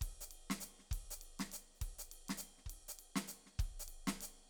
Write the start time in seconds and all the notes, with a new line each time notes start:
0.01 kick, ride
0.21 hi-hat pedal
0.31 ride
0.50 snare, ride
0.60 hi-hat pedal, ride
0.79 snare
0.91 kick, ride
1.10 hi-hat pedal
1.21 ride
1.39 snare, ride
1.52 hi-hat pedal, ride
1.75 hi-hat pedal
1.81 kick, ride
1.99 hi-hat pedal
2.12 ride
2.28 snare, ride
2.37 hi-hat pedal, ride
2.58 snare
2.66 kick, ride
2.88 hi-hat pedal
2.99 ride
3.16 snare, ride
3.28 hi-hat pedal, ride
3.46 snare
3.59 kick, ride
3.79 hi-hat pedal
3.88 ride
4.07 snare, ride
4.21 hi-hat pedal, ride